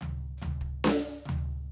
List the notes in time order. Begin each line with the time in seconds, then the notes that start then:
0.02 floor tom, high tom
0.37 hi-hat pedal
0.41 floor tom, high tom
0.61 kick
0.84 snare
0.87 snare
1.25 closed hi-hat, floor tom, high tom